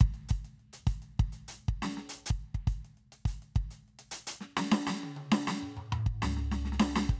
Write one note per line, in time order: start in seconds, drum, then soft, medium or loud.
0.01 kick loud
0.01 closed hi-hat soft
0.15 closed hi-hat medium
0.29 closed hi-hat loud
0.29 kick medium
0.45 closed hi-hat medium
0.60 closed hi-hat soft
0.74 closed hi-hat medium
0.88 closed hi-hat loud
0.88 kick medium
1.03 closed hi-hat medium
1.19 kick medium
1.19 closed hi-hat soft
1.33 closed hi-hat medium
1.49 closed hi-hat loud
1.69 kick medium
1.83 snare loud
1.98 snare soft
2.10 closed hi-hat loud
2.27 closed hi-hat loud
2.31 kick medium
2.40 closed hi-hat soft
2.55 kick soft
2.55 closed hi-hat soft
2.68 closed hi-hat loud
2.68 kick medium
2.85 closed hi-hat soft
2.98 closed hi-hat soft
3.13 closed hi-hat medium
3.26 closed hi-hat loud
3.26 kick medium
3.43 closed hi-hat soft
3.56 kick medium
3.56 closed hi-hat soft
3.71 closed hi-hat medium
3.89 closed hi-hat soft
4.00 closed hi-hat medium
4.12 closed hi-hat loud
4.28 closed hi-hat loud
4.42 snare soft
4.58 snare loud
4.73 snare loud
4.88 snare loud
5.04 high tom medium
5.17 high tom medium
5.33 snare loud
5.48 snare loud
5.63 mid tom medium
5.78 mid tom medium
5.93 mid tom loud
6.07 kick medium
6.23 snare loud
6.23 floor tom loud
6.38 snare soft
6.52 snare medium
6.66 snare medium
6.73 snare soft
6.80 snare soft
6.80 snare loud
6.96 snare loud
7.10 kick medium